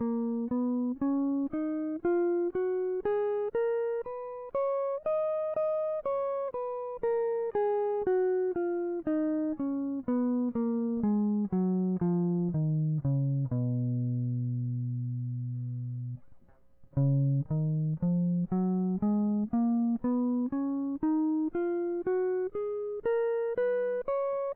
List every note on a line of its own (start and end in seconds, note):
0.02 0.51 A#3
0.52 0.97 B3
1.02 1.51 C#4
1.54 2.02 D#4
2.06 2.52 F4
2.56 3.05 F#4
3.06 3.52 G#4
3.56 4.05 A#4
4.05 4.51 B4
4.56 5.00 C#5
5.07 5.57 D#5
5.57 6.03 D#5
6.06 6.53 C#5
6.55 7.01 B4
7.04 7.53 A#4
7.56 8.07 G#4
8.08 8.56 F#4
8.57 9.04 F4
9.08 9.57 D#4
9.61 10.04 C#4
10.09 10.53 B3
10.56 11.08 A#3
11.05 11.49 G#3
11.54 12.01 F#3
12.03 12.55 F3
12.56 13.03 D#3
13.07 13.49 C#3
13.54 16.19 B2
16.99 17.45 C#3
17.52 17.99 D#3
18.04 18.50 F3
18.53 19.01 F#3
19.04 19.48 G#3
19.54 20.01 A#3
20.05 20.51 B3
20.53 21.01 C#4
21.04 21.52 D#4
21.56 22.05 F4
22.07 22.50 F#4
22.56 23.02 G#4
23.06 23.58 A#4
23.58 24.05 B4
24.09 24.55 C#5